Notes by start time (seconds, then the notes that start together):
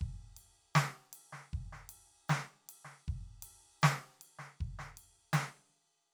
0.01 kick
0.37 ride
0.75 snare, hi-hat pedal
1.13 ride
1.33 snare
1.54 kick
1.73 snare
1.90 ride
2.29 snare, hi-hat pedal
2.69 ride
2.85 snare
3.08 kick
3.43 ride
3.82 snare, hi-hat pedal
4.22 ride
4.39 snare
4.61 kick
4.79 snare
4.98 ride
5.33 snare, hi-hat pedal, ride bell